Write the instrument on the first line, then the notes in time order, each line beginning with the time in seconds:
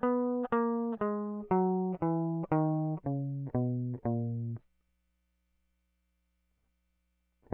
electric guitar
0.03 B3
0.53 A#3
1.01 G#3
1.51 F#3
2.03 E3
2.52 D#3
3.07 C#3
3.55 B2
4.06 A#2